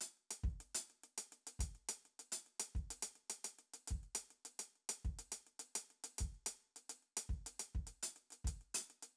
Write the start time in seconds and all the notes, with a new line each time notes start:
0.01 closed hi-hat
0.17 closed hi-hat
0.31 closed hi-hat
0.44 kick
0.50 closed hi-hat
0.60 closed hi-hat
0.75 closed hi-hat
0.90 closed hi-hat
1.04 closed hi-hat
1.18 closed hi-hat
1.32 closed hi-hat
1.47 closed hi-hat
1.59 kick, closed hi-hat
1.75 closed hi-hat
1.89 closed hi-hat
2.05 closed hi-hat
2.19 closed hi-hat
2.32 closed hi-hat
2.46 closed hi-hat
2.60 closed hi-hat
2.75 kick, closed hi-hat
2.91 closed hi-hat
3.03 closed hi-hat
3.16 closed hi-hat
3.30 closed hi-hat
3.45 closed hi-hat
3.59 closed hi-hat
3.74 closed hi-hat
3.88 kick, closed hi-hat
4.03 closed hi-hat
4.15 closed hi-hat
4.31 closed hi-hat
4.45 closed hi-hat
4.59 closed hi-hat
4.76 closed hi-hat
4.89 closed hi-hat
5.05 kick, closed hi-hat
5.19 closed hi-hat
5.32 closed hi-hat
5.47 closed hi-hat
5.60 closed hi-hat
5.75 closed hi-hat
5.90 closed hi-hat
6.04 closed hi-hat
6.18 kick, closed hi-hat
6.34 closed hi-hat
6.46 closed hi-hat
6.61 closed hi-hat
6.76 closed hi-hat
6.90 closed hi-hat
7.03 closed hi-hat
7.17 closed hi-hat
7.29 kick
7.34 closed hi-hat
7.46 closed hi-hat
7.60 closed hi-hat
7.74 kick, closed hi-hat
7.87 closed hi-hat
8.03 closed hi-hat
8.16 closed hi-hat
8.31 closed hi-hat
8.32 closed hi-hat
8.45 kick, closed hi-hat
8.61 closed hi-hat
8.75 closed hi-hat
8.90 closed hi-hat
9.03 closed hi-hat